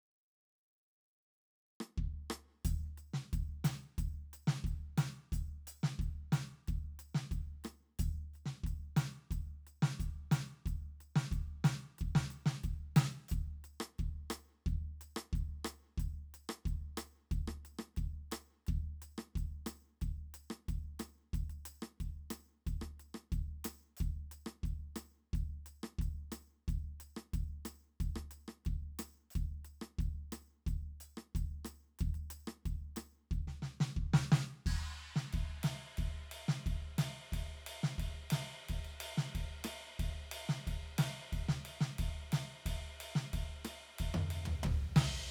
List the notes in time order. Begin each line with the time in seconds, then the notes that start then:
1.80 cross-stick
1.98 kick
2.30 cross-stick
2.65 kick, percussion
2.85 snare
2.98 percussion
3.14 snare
3.33 kick, percussion
3.64 snare, percussion
3.73 kick
3.98 kick, percussion
4.33 percussion
4.47 snare
4.64 kick, percussion
4.98 snare, percussion
5.32 kick, percussion
5.67 percussion
5.83 snare
5.99 kick, percussion
6.32 snare, percussion
6.43 kick
6.68 kick, percussion
6.99 percussion
7.15 snare
7.31 kick, percussion
7.64 cross-stick, percussion
7.99 kick, percussion
8.34 percussion
8.35 percussion
8.46 snare
8.64 kick, percussion
8.97 snare, percussion
9.31 kick, percussion
9.67 percussion
9.82 snare
10.00 kick, percussion
10.31 snare, percussion
10.66 kick, percussion
11.01 percussion
11.16 snare
11.32 kick, percussion
11.64 snare, percussion
11.98 kick, percussion
12.15 snare
12.30 percussion
12.46 snare
12.64 kick, percussion
12.96 snare, percussion
13.28 kick, percussion
13.32 percussion
13.64 percussion
13.80 cross-stick
13.99 kick, percussion
14.30 cross-stick, percussion
14.66 kick, percussion
15.01 percussion
15.16 cross-stick
15.33 kick, percussion
15.65 cross-stick, percussion
15.98 kick, percussion
16.34 percussion
16.49 cross-stick
16.65 kick, percussion
16.97 cross-stick, percussion
17.31 kick, percussion
17.48 cross-stick
17.65 percussion
17.79 cross-stick
17.97 kick, percussion
18.32 cross-stick, percussion
18.67 kick, percussion
19.02 percussion
19.18 cross-stick
19.35 kick, percussion
19.66 cross-stick, percussion
20.01 kick, percussion
20.34 percussion
20.50 cross-stick
20.68 kick, percussion
20.99 cross-stick, percussion
21.33 kick, percussion
21.50 percussion
21.65 percussion
21.82 cross-stick
22.00 kick, percussion
22.30 cross-stick, percussion
22.67 kick, percussion
22.81 cross-stick
23.00 percussion
23.14 cross-stick
23.32 kick, percussion
23.64 cross-stick, percussion
23.97 kick, percussion
24.02 percussion
24.31 percussion
24.46 cross-stick
24.63 kick, percussion
24.96 cross-stick, percussion
25.33 kick, percussion
25.66 percussion
25.83 cross-stick
25.99 kick, percussion
26.32 cross-stick, percussion
26.68 kick, percussion
27.00 percussion
27.17 cross-stick
27.33 kick, percussion
27.65 cross-stick, percussion
28.00 kick, percussion
28.16 cross-stick
28.31 percussion
28.48 cross-stick
28.65 kick, percussion
28.99 cross-stick, percussion
29.31 percussion
29.35 kick, percussion
29.65 percussion
29.81 cross-stick
29.99 kick, percussion
30.32 cross-stick, percussion
30.67 kick, percussion
31.00 percussion
31.17 cross-stick
31.35 kick, percussion
31.65 cross-stick, percussion
31.99 kick, percussion
32.14 percussion
32.30 percussion
32.47 cross-stick
32.66 kick, percussion
32.96 cross-stick, percussion
33.31 kick, percussion
33.47 snare
33.62 snare
33.80 snare
33.96 kick
34.14 snare
34.32 snare
34.66 kick, crash
35.07 kick
35.16 snare
35.33 kick, ride
35.63 snare, ride
35.97 kick, ride
36.31 ride
36.48 snare
36.66 kick, ride
36.98 snare, ride
37.32 kick, ride
37.67 ride
37.83 snare
37.98 kick, ride
38.30 snare, ride
38.69 kick, ride
38.85 ride
39.00 ride
39.17 snare
39.35 kick, ride
39.64 cross-stick, ride
39.99 kick, ride
40.32 ride
40.49 snare
40.67 kick, ride
40.98 snare, ride
41.32 kick, ride
41.49 snare
41.65 ride
41.81 snare
41.98 kick, ride
42.32 snare, ride
42.66 kick, ride
43.00 ride
43.15 snare
43.33 kick, ride
43.65 cross-stick, ride
43.99 kick, ride
44.14 mid tom
44.30 ride
44.45 floor tom
44.63 kick, floor tom
44.96 snare, ride